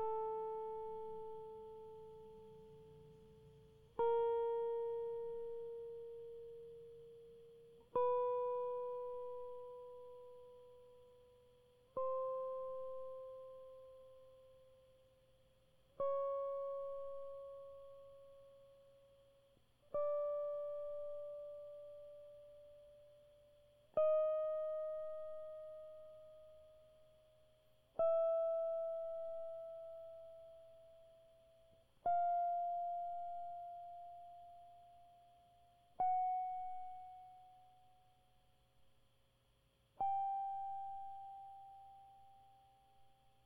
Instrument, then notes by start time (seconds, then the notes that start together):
electric guitar
0.00 A4
3.99 A#4
7.96 B4
11.97 C5
16.00 C#5
19.95 D5
23.97 D#5
27.99 E5
32.06 F5
36.00 F#5
40.01 G5